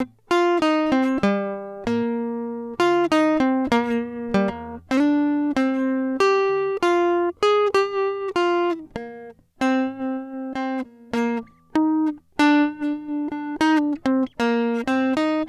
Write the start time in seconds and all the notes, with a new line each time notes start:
0.32 F4
0.63 D#4
0.91 C4 D#4
1.24 G3
1.88 A#3
2.80 F4
3.12 D#4
3.41 C4
3.72 A#3
4.35 G3
4.49 A#3
4.92 D4
5.57 C4
6.21 G4
6.83 F4
7.43 G#4
7.75 G4
8.37 F4
8.71 E4
8.96 A#3
9.62 C4
10.57 C4
10.80 A#3
11.14 A#3
11.76 D#4
12.40 D4
13.33 D4
13.61 D#4
13.77 D4
14.06 C4
14.40 A#3
14.88 C4
15.18 D#4